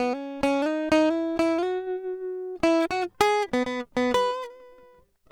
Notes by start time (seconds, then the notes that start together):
0.01 B3
0.14 C#4
0.44 C#4
0.67 D#4
0.93 D#4
1.10 E4
1.40 E4
1.64 F#4
2.64 E4
2.92 F#4
3.21 G#4
3.54 B3
3.68 B3
3.98 B3
4.12 G#3 B4